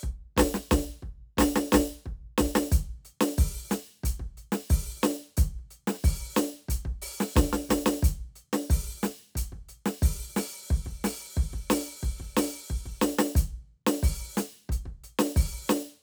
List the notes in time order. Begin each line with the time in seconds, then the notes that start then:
0.01 kick, hi-hat pedal
0.37 kick, snare
0.39 snare
0.54 snare
0.71 kick, snare
1.03 kick, snare
1.37 kick, snare
1.41 snare
1.56 snare
1.72 kick, snare
1.74 snare
2.06 kick
2.38 kick, snare
2.55 snare
2.72 closed hi-hat, kick
3.05 closed hi-hat
3.21 snare
3.38 open hi-hat, kick
3.69 closed hi-hat, snare, hi-hat pedal
4.04 closed hi-hat, kick
4.20 kick
4.37 closed hi-hat
4.52 snare
4.70 open hi-hat, kick
5.02 snare, hi-hat pedal
5.37 closed hi-hat, kick
5.59 kick
5.71 closed hi-hat
5.87 snare
5.93 snare
6.04 open hi-hat, kick
6.35 closed hi-hat, snare, hi-hat pedal
6.69 closed hi-hat, kick
6.85 kick
7.02 open hi-hat
7.20 snare
7.36 kick, snare
7.53 snare
7.69 kick, snare, hi-hat pedal
7.86 snare
8.03 closed hi-hat, kick
8.36 closed hi-hat
8.53 snare
8.70 open hi-hat, kick
9.03 closed hi-hat, snare, hi-hat pedal
9.35 closed hi-hat, kick
9.52 kick
9.69 closed hi-hat
9.86 snare
10.02 open hi-hat, kick
10.36 open hi-hat, snare
10.70 kick
10.86 kick
10.90 crash
11.04 open hi-hat, snare
11.37 open hi-hat, kick
11.53 kick
11.58 crash
11.70 open hi-hat, snare
12.03 open hi-hat, kick
12.20 kick
12.25 ride
12.37 open hi-hat, snare
12.70 kick
12.86 kick
12.90 crash, ride
13.02 snare, hi-hat pedal
13.19 snare
13.35 closed hi-hat, kick
13.87 snare
14.03 open hi-hat, kick
14.35 closed hi-hat, snare, hi-hat pedal
14.69 closed hi-hat, kick
14.86 kick
15.04 closed hi-hat
15.19 snare
15.36 open hi-hat, kick
15.68 snare, hi-hat pedal